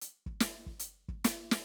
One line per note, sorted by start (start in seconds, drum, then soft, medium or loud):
0.02 closed hi-hat medium
0.26 kick soft
0.41 closed hi-hat loud
0.41 snare loud
0.67 kick soft
0.80 closed hi-hat loud
1.09 kick soft
1.24 closed hi-hat loud
1.24 snare loud
1.51 snare loud